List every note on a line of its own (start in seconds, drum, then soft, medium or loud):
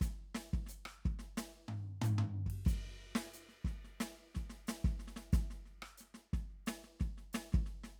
0.01 kick medium
0.01 snare soft
0.01 hi-hat pedal medium
0.34 snare medium
0.53 kick medium
0.53 snare soft
0.66 snare soft
0.66 hi-hat pedal medium
0.85 cross-stick medium
1.04 kick medium
1.04 snare soft
1.19 snare soft
1.37 snare medium
1.37 hi-hat pedal medium
1.68 floor tom medium
2.02 floor tom loud
2.02 hi-hat pedal medium
2.18 floor tom loud
2.46 kick soft
2.46 ride soft
2.65 kick medium
2.65 hi-hat pedal medium
2.65 crash soft
3.15 snare medium
3.33 snare soft
3.33 hi-hat pedal medium
3.49 snare soft
3.64 kick soft
3.64 snare soft
3.84 snare soft
4.00 snare medium
4.00 hi-hat pedal medium
4.34 kick soft
4.34 snare soft
4.49 snare soft
4.67 snare medium
4.67 hi-hat pedal medium
4.84 kick medium
4.84 snare soft
4.99 snare soft
5.07 snare soft
5.16 snare soft
5.33 kick medium
5.33 snare soft
5.33 hi-hat pedal medium
5.50 snare soft
5.65 snare soft
5.82 cross-stick medium
5.97 snare soft
5.97 hi-hat pedal medium
6.14 snare soft
6.33 kick medium
6.33 snare soft
6.50 snare soft
6.66 snare medium
6.66 hi-hat pedal medium
6.84 snare soft
6.99 kick medium
6.99 snare soft
7.17 snare soft
7.33 snare medium
7.33 hi-hat pedal medium
7.52 kick medium
7.52 snare soft
7.66 snare soft
7.83 snare soft